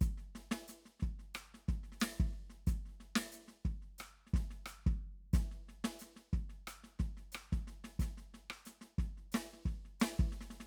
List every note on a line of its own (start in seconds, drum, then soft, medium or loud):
0.01 kick medium
0.01 snare soft
0.01 hi-hat pedal medium
0.18 snare soft
0.35 snare soft
0.51 snare medium
0.68 snare soft
0.68 hi-hat pedal medium
0.86 snare soft
1.00 kick medium
1.00 snare soft
1.19 snare soft
1.34 cross-stick medium
1.34 hi-hat pedal medium
1.54 snare soft
1.68 kick medium
1.68 snare soft
1.83 snare soft
1.92 snare soft
2.00 snare medium
2.00 hi-hat pedal medium
2.20 kick medium
2.32 snare soft
2.50 snare soft
2.67 kick medium
2.67 snare soft
2.67 hi-hat pedal medium
2.85 snare soft
2.88 snare soft
3.00 snare soft
3.16 snare loud
3.32 snare soft
3.32 hi-hat pedal medium
3.48 snare soft
3.65 kick medium
3.65 snare soft
3.82 snare soft
3.98 cross-stick medium
3.98 hi-hat pedal medium
4.27 snare soft
4.34 kick medium
4.34 snare soft
4.51 snare soft
4.66 cross-stick medium
4.66 hi-hat pedal medium
4.87 kick medium
4.87 snare soft
5.33 kick medium
5.33 snare soft
5.33 hi-hat pedal medium
5.51 snare soft
5.69 snare soft
5.84 snare medium
5.99 snare soft
5.99 hi-hat pedal medium
6.16 snare soft
6.33 kick medium
6.33 snare soft
6.49 snare soft
6.67 cross-stick medium
6.67 hi-hat pedal medium
6.84 snare soft
6.99 kick medium
6.99 snare soft
7.17 snare soft
7.32 cross-stick medium
7.32 hi-hat pedal medium
7.52 kick medium
7.52 snare soft
7.68 snare soft
7.84 snare soft
7.99 kick medium
7.99 snare soft
7.99 hi-hat pedal medium
8.18 snare soft
8.34 snare soft
8.50 cross-stick medium
8.65 snare soft
8.65 hi-hat pedal medium
8.81 snare soft
8.98 kick medium
8.98 snare soft
9.17 snare soft
9.32 snare medium
9.32 hi-hat pedal medium
9.53 snare soft
9.66 kick medium
9.66 snare soft
9.85 snare soft
10.00 snare loud
10.00 hi-hat pedal medium
10.18 kick medium
10.18 snare soft
10.32 snare soft
10.41 snare soft
10.50 snare soft
10.60 snare soft